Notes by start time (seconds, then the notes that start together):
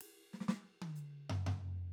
0.01 ride
0.33 snare
0.40 snare
0.48 snare
0.82 high tom
0.96 hi-hat pedal
1.29 floor tom
1.46 floor tom